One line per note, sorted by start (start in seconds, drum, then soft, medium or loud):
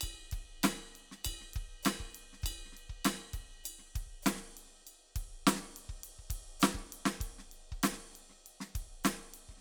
0.01 kick soft
0.01 snare soft
0.01 hi-hat pedal soft
0.01 ride bell loud
0.14 kick soft
0.32 kick soft
0.32 ride medium
0.39 kick soft
0.64 snare loud
0.64 hi-hat pedal medium
0.64 ride bell loud
0.75 snare soft
0.96 ride soft
1.12 snare soft
1.25 kick soft
1.25 hi-hat pedal soft
1.25 ride bell loud
1.33 kick soft
1.41 snare soft
1.54 kick medium
1.54 ride medium
1.64 kick soft
1.83 snare loud
1.83 hi-hat pedal medium
1.83 ride bell loud
1.98 kick soft
1.98 snare soft
2.11 hi-hat pedal soft
2.15 ride medium
2.33 snare soft
2.42 kick medium
2.42 hi-hat pedal soft
2.46 ride bell loud
2.51 kick soft
2.66 snare soft
2.73 snare soft
2.77 ride soft
2.90 kick soft
3.05 snare loud
3.05 hi-hat pedal medium
3.05 ride bell loud
3.15 snare soft
3.34 kick soft
3.34 ride medium
3.40 kick soft
3.45 snare soft
3.64 hi-hat pedal soft
3.64 ride bell medium
3.79 snare soft
3.87 cross-stick soft
3.94 kick medium
3.94 snare soft
3.94 ride medium
4.03 kick soft
4.07 kick soft
4.23 snare loud
4.23 hi-hat pedal medium
4.27 ride loud
4.37 snare soft
4.57 ride medium
4.67 snare soft
4.71 snare soft
4.87 ride bell soft
5.16 kick medium
5.16 ride medium
5.29 kick soft
5.47 snare loud
5.47 hi-hat pedal medium
5.47 ride loud
5.56 snare soft
5.77 ride medium
5.90 kick soft
6.04 ride medium
6.19 kick soft
6.19 cross-stick soft
6.30 kick soft
6.30 ride medium
6.54 kick soft
6.60 snare loud
6.60 hi-hat pedal medium
6.60 ride loud
6.75 kick soft
6.93 ride medium
7.06 snare loud
7.21 kick soft
7.21 ride medium
7.39 snare soft
7.52 ride soft
7.72 kick soft
7.78 kick soft
7.84 snare loud
7.84 hi-hat pedal loud
7.84 ride loud
7.93 snare soft
8.12 snare soft
8.16 ride soft
8.30 snare soft
8.47 ride medium
8.61 snare medium
8.76 kick soft
8.76 ride medium
8.82 kick soft
9.04 snare loud
9.04 hi-hat pedal loud
9.04 ride loud
9.34 ride medium
9.49 kick soft
9.49 snare soft
9.57 snare soft